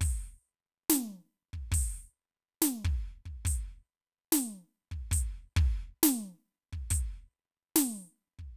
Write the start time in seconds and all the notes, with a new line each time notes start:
0.01 open hi-hat, kick
0.90 open hi-hat, snare
0.96 snare
1.53 kick
1.72 open hi-hat, kick
2.62 open hi-hat, snare
2.85 kick
3.26 kick
3.45 open hi-hat, kick
4.32 open hi-hat, snare
4.91 kick
5.11 open hi-hat, kick
5.57 kick
6.03 open hi-hat, snare
6.73 kick
6.91 open hi-hat, kick
7.76 open hi-hat, snare
8.39 kick